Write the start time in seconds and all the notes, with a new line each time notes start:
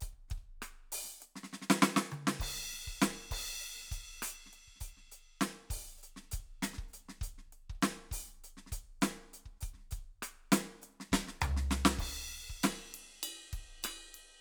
0.01 open hi-hat, kick, hi-hat pedal
0.12 kick
0.28 kick, snare, closed hi-hat
0.37 kick
0.62 closed hi-hat, cross-stick
0.92 open hi-hat
1.04 snare
1.20 closed hi-hat, hi-hat pedal
1.35 snare
1.43 snare
1.53 snare
1.61 snare
1.70 snare
1.82 snare, hi-hat pedal
1.96 snare
2.10 hi-hat pedal, high tom
2.27 snare
2.40 kick, crash
2.49 kick
2.55 snare
2.71 closed hi-hat, snare
2.87 kick
3.02 open hi-hat, snare, hi-hat pedal
3.28 kick, snare, crash
3.60 hi-hat pedal
3.75 snare
3.79 snare
3.81 snare
3.87 snare
3.91 closed hi-hat, kick
3.97 kick
4.22 open hi-hat, cross-stick
4.46 snare
4.53 closed hi-hat
4.67 kick
4.76 snare
4.80 open hi-hat, kick
4.97 snare
5.06 snare
5.08 closed hi-hat, snare
5.40 closed hi-hat, snare, hi-hat pedal
5.70 open hi-hat, kick
5.76 kick
5.98 hi-hat pedal
6.03 closed hi-hat
6.16 snare
6.22 snare
6.31 closed hi-hat, kick
6.39 kick
6.62 closed hi-hat, snare
6.73 snare
6.78 kick
6.88 hi-hat pedal
6.93 closed hi-hat
7.08 snare
7.21 closed hi-hat, kick
7.27 kick
7.38 snare
7.52 closed hi-hat
7.69 kick
7.75 kick
7.82 closed hi-hat, snare, hi-hat pedal
8.11 open hi-hat, kick
8.27 snare
8.44 closed hi-hat
8.57 snare
8.66 snare
8.72 closed hi-hat, kick
9.01 closed hi-hat, snare, hi-hat pedal
9.33 closed hi-hat
9.45 kick
9.56 snare
9.61 open hi-hat, kick
9.71 kick, snare
9.73 kick, snare
9.79 snare
9.91 closed hi-hat, kick
9.98 kick
10.22 closed hi-hat, cross-stick
10.52 closed hi-hat, snare
10.81 closed hi-hat, hi-hat pedal
11.00 snare
11.12 kick, snare
11.18 kick
11.28 snare
11.41 hi-hat pedal, floor tom
11.56 snare
11.70 snare, hi-hat pedal
11.85 snare
11.98 kick, crash
12.09 kick
12.50 kick
12.63 snare, hi-hat pedal, ride bell
12.94 ride
13.23 hi-hat pedal, ride bell
13.53 kick, ride
13.59 kick
13.83 cross-stick, hi-hat pedal, ride bell
14.14 ride